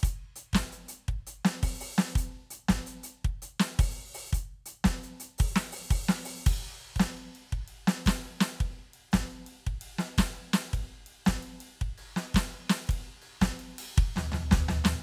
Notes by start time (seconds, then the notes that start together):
0.01 kick, hi-hat pedal
0.05 closed hi-hat
0.37 closed hi-hat
0.54 kick, snare
0.73 closed hi-hat
0.89 closed hi-hat
1.09 kick
1.28 closed hi-hat
1.46 snare
1.64 open hi-hat, kick
1.81 open hi-hat
1.99 snare
2.12 hi-hat pedal
2.16 closed hi-hat, kick
2.51 closed hi-hat
2.70 kick, snare
2.87 closed hi-hat
3.04 closed hi-hat
3.26 kick
3.43 closed hi-hat
3.61 snare
3.80 open hi-hat, kick
4.15 open hi-hat
4.31 closed hi-hat, kick, hi-hat pedal
4.67 closed hi-hat
4.85 kick, snare
5.04 closed hi-hat
5.21 closed hi-hat
5.39 open hi-hat, kick
5.57 snare
5.73 open hi-hat
5.92 open hi-hat, kick
6.09 snare
6.26 open hi-hat
6.47 kick, crash
6.81 crash
6.97 kick, snare, hi-hat pedal
7.18 crash
7.36 crash
7.53 kick
7.69 crash
7.88 snare
8.06 kick, snare, hi-hat pedal, crash
8.42 snare, crash
8.61 kick, crash
8.95 crash
9.13 kick, snare, hi-hat pedal
9.31 crash
9.48 crash
9.68 kick
9.82 crash
10.00 snare
10.19 kick, snare, hi-hat pedal, crash
10.54 snare, crash
10.74 kick, crash
11.07 crash
11.26 kick, snare, hi-hat pedal
11.44 crash
11.61 crash
11.82 kick
11.99 crash
12.17 snare
12.35 kick, snare, crash
12.71 snare, crash
12.88 kick, hi-hat pedal
12.92 crash
13.23 crash
13.42 kick, snare
13.60 crash
13.79 crash
13.99 kick
14.17 snare, floor tom
14.33 snare, floor tom
14.52 kick, snare, floor tom, hi-hat pedal
14.69 snare, floor tom
14.85 snare, floor tom